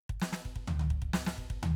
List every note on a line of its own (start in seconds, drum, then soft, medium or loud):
0.09 kick soft
0.20 snare medium
0.20 ride soft
0.32 snare medium
0.32 ride soft
0.45 kick soft
0.56 kick soft
0.67 floor tom loud
0.67 high tom medium
0.79 floor tom medium
0.79 high tom medium
0.90 kick soft
1.02 kick soft
1.13 snare loud
1.13 ride medium
1.25 snare medium
1.25 ride medium
1.38 kick soft
1.50 kick soft
1.63 floor tom loud
1.63 high tom loud